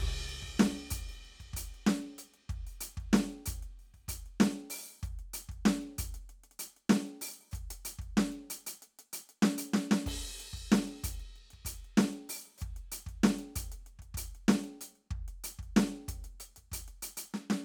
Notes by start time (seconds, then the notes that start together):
0.30 closed hi-hat
0.43 kick
0.48 closed hi-hat
0.60 snare
0.76 closed hi-hat
0.91 closed hi-hat, kick
1.10 open hi-hat
1.26 closed hi-hat
1.41 kick, open hi-hat
1.54 closed hi-hat, kick
1.75 closed hi-hat
1.87 snare
2.02 open hi-hat
2.19 closed hi-hat
2.35 closed hi-hat
2.50 kick, closed hi-hat
2.68 open hi-hat
2.81 closed hi-hat
2.98 kick, closed hi-hat
3.14 snare
3.31 closed hi-hat
3.47 closed hi-hat, kick
3.63 closed hi-hat
3.80 open hi-hat
3.95 kick, open hi-hat
4.09 closed hi-hat, kick
4.27 closed hi-hat
4.41 snare
4.56 closed hi-hat
4.71 open hi-hat
4.91 open hi-hat
5.04 kick, hi-hat pedal
5.20 closed hi-hat
5.34 closed hi-hat
5.50 kick, closed hi-hat
5.66 snare
5.82 closed hi-hat
5.99 closed hi-hat, kick
6.15 closed hi-hat
6.30 closed hi-hat
6.44 closed hi-hat
6.52 closed hi-hat
6.60 closed hi-hat
6.77 closed hi-hat
6.90 snare
7.07 closed hi-hat
7.22 open hi-hat
7.42 open hi-hat
7.52 kick, closed hi-hat, hi-hat pedal
7.71 closed hi-hat
7.86 closed hi-hat
7.99 kick, closed hi-hat
8.18 snare
8.33 closed hi-hat
8.51 closed hi-hat
8.67 closed hi-hat
8.83 closed hi-hat
9.00 closed hi-hat
9.14 closed hi-hat
9.30 closed hi-hat
9.43 snare
9.59 closed hi-hat
9.74 snare
9.92 snare
10.07 kick, crash
10.25 closed hi-hat
10.41 closed hi-hat
10.54 kick, closed hi-hat
10.73 snare
10.88 closed hi-hat
11.04 closed hi-hat, kick
11.20 closed hi-hat
11.37 closed hi-hat
11.51 kick, closed hi-hat
11.66 closed hi-hat, kick
11.85 closed hi-hat
11.98 snare
12.14 closed hi-hat
12.30 open hi-hat
12.46 open hi-hat
12.59 kick, closed hi-hat, hi-hat pedal
12.77 closed hi-hat
12.93 closed hi-hat
13.07 kick, closed hi-hat
13.24 snare
13.39 closed hi-hat
13.56 closed hi-hat, kick
13.73 closed hi-hat
13.87 closed hi-hat
14.00 kick, closed hi-hat
14.15 closed hi-hat, kick
14.36 closed hi-hat
14.49 snare
14.65 closed hi-hat
14.82 closed hi-hat
14.96 closed hi-hat
15.11 kick
15.29 open hi-hat
15.45 closed hi-hat
15.60 kick
15.64 closed hi-hat
15.77 snare
15.93 closed hi-hat
16.09 kick, closed hi-hat
16.25 open hi-hat
16.41 closed hi-hat
16.57 kick, closed hi-hat
16.73 closed hi-hat, kick
16.89 closed hi-hat
17.03 closed hi-hat
17.18 closed hi-hat
17.35 snare
17.51 snare